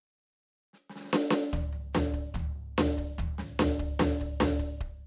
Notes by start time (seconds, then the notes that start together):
0.73 snare, hi-hat pedal
0.89 snare
0.95 snare
1.00 snare
1.04 snare
1.08 snare
1.13 snare
1.30 snare
1.53 kick, floor tom
1.73 kick, floor tom
1.93 snare, floor tom, hi-hat pedal
2.14 kick, floor tom
2.34 kick, floor tom
2.77 snare, floor tom, hi-hat pedal
2.97 kick, floor tom
3.18 kick, floor tom, hi-hat pedal
3.38 snare, floor tom
3.59 snare, floor tom
3.79 kick, floor tom
3.99 snare, floor tom
4.20 kick, floor tom
4.40 snare, floor tom
4.45 snare
4.59 kick
4.80 kick